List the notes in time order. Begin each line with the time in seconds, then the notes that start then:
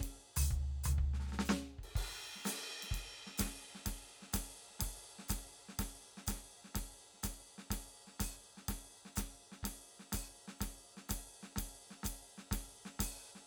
0.01 kick, ride
0.36 open hi-hat, floor tom
0.51 kick
0.84 open hi-hat, floor tom
0.98 kick
1.14 snare
1.20 snare
1.23 snare
1.27 snare
1.32 snare
1.39 snare
1.45 hi-hat pedal
1.49 snare
1.79 kick
1.84 ride
1.96 kick, crash
2.36 snare
2.45 snare, hi-hat pedal, ride
2.50 snare
2.83 snare, ride
2.92 kick, snare, ride
3.27 snare
3.38 kick, snare, hi-hat pedal, ride
3.45 snare
3.75 snare
3.85 kick, snare, hi-hat pedal, ride
4.22 snare
4.33 kick, snare, hi-hat pedal, ride
4.71 snare
4.80 kick, snare, ride
4.86 snare
5.19 snare
5.29 kick, snare, hi-hat pedal, ride
5.69 snare
5.79 kick, snare, ride
6.17 snare
6.27 kick, snare, hi-hat pedal, ride
6.35 snare
6.65 snare
6.75 kick, snare, ride
7.14 snare
7.23 kick, snare, hi-hat pedal, ride
7.58 snare
7.71 kick, snare, hi-hat pedal, ride
8.07 snare
8.20 kick, snare, hi-hat pedal, ride
8.58 snare
8.69 kick, snare, ride
9.05 snare
9.16 kick, snare, hi-hat pedal, ride
9.52 snare
9.63 kick, snare, ride
10.00 snare
10.13 kick, snare, hi-hat pedal, ride
10.48 snare
10.59 kick, snare, hi-hat pedal, ride
10.97 snare
11.09 kick, snare, hi-hat pedal, ride
11.43 snare
11.56 kick, snare, ride
11.91 snare
12.04 kick, snare, hi-hat pedal, ride
12.38 snare
12.52 kick, snare, ride
12.86 snare
13.00 kick, snare, hi-hat pedal, ride
13.36 snare